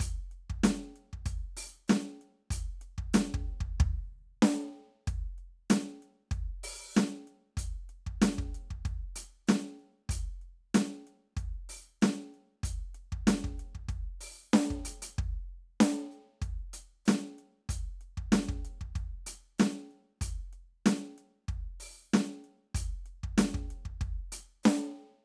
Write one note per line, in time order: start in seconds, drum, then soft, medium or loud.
0.01 closed hi-hat loud
0.01 kick medium
0.32 closed hi-hat soft
0.51 kick medium
0.64 closed hi-hat loud
0.64 snare loud
0.97 closed hi-hat soft
1.14 kick soft
1.27 closed hi-hat medium
1.27 kick medium
1.58 open hi-hat loud
1.89 snare loud
1.89 closed hi-hat medium
1.89 hi-hat pedal medium
2.22 closed hi-hat soft
2.51 closed hi-hat loud
2.51 kick medium
2.82 closed hi-hat soft
2.99 kick medium
3.15 closed hi-hat loud
3.15 snare loud
3.35 kick medium
3.61 kick medium
3.81 kick loud
4.43 snare loud
5.08 kick medium
5.08 closed hi-hat medium
5.39 closed hi-hat soft
5.71 closed hi-hat loud
5.71 snare loud
6.03 closed hi-hat soft
6.32 kick medium
6.32 closed hi-hat soft
6.64 open hi-hat loud
6.96 closed hi-hat medium
6.96 snare loud
6.96 hi-hat pedal medium
7.28 closed hi-hat soft
7.58 closed hi-hat loud
7.58 kick medium
7.90 closed hi-hat soft
8.07 kick medium
8.23 closed hi-hat loud
8.23 snare loud
8.39 kick medium
8.55 closed hi-hat medium
8.71 kick medium
8.86 kick medium
8.86 closed hi-hat soft
9.17 open hi-hat loud
9.48 closed hi-hat medium
9.48 snare loud
9.48 hi-hat pedal medium
9.80 closed hi-hat soft
10.10 closed hi-hat loud
10.10 kick medium
10.42 closed hi-hat soft
10.75 closed hi-hat loud
10.75 snare loud
11.08 closed hi-hat soft
11.38 kick medium
11.38 closed hi-hat medium
11.70 open hi-hat loud
12.03 snare loud
12.03 closed hi-hat medium
12.03 hi-hat pedal medium
12.35 closed hi-hat soft
12.64 closed hi-hat loud
12.64 kick medium
12.96 closed hi-hat soft
13.13 kick medium
13.28 closed hi-hat loud
13.28 snare loud
13.45 kick medium
13.60 closed hi-hat soft
13.76 kick soft
13.89 kick medium
13.89 closed hi-hat soft
14.22 open hi-hat loud
14.54 snare loud
14.54 hi-hat pedal medium
14.71 kick medium
14.86 closed hi-hat loud
15.03 closed hi-hat loud
15.19 kick medium
15.81 closed hi-hat loud
15.81 snare loud
16.12 closed hi-hat soft
16.43 kick medium
16.43 closed hi-hat medium
16.74 closed hi-hat loud
17.06 closed hi-hat loud
17.06 snare loud
17.06 hi-hat pedal medium
17.39 closed hi-hat soft
17.70 closed hi-hat loud
17.70 kick medium
18.02 closed hi-hat soft
18.18 kick medium
18.33 closed hi-hat medium
18.33 snare loud
18.49 kick medium
18.66 closed hi-hat medium
18.82 kick medium
18.96 kick medium
18.96 closed hi-hat soft
19.27 open hi-hat loud
19.59 snare loud
19.59 hi-hat pedal medium
19.92 closed hi-hat soft
20.22 closed hi-hat loud
20.22 kick medium
20.54 closed hi-hat soft
20.87 closed hi-hat loud
20.87 snare loud
21.19 closed hi-hat soft
21.49 kick medium
21.49 closed hi-hat soft
21.81 open hi-hat loud
22.14 snare loud
22.14 hi-hat pedal medium
22.14 open hi-hat medium
22.45 closed hi-hat soft
22.76 closed hi-hat loud
22.76 kick medium
23.07 closed hi-hat soft
23.24 kick medium
23.39 closed hi-hat loud
23.39 snare loud
23.55 kick medium
23.71 closed hi-hat soft
23.86 kick medium
24.02 kick medium
24.02 closed hi-hat soft
24.33 open hi-hat loud
24.64 snare loud
24.64 hi-hat pedal medium